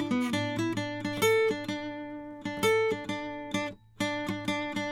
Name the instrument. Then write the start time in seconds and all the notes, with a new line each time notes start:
acoustic guitar
0.00 D4
0.12 B3
0.34 D4
0.60 E4
0.78 D4
1.06 D4
1.23 A4
1.52 D4
1.70 D4
2.47 D4
2.64 A4
2.93 D4
3.10 D4
3.56 D4
4.01 D4
4.28 D4
4.50 D4
4.78 D4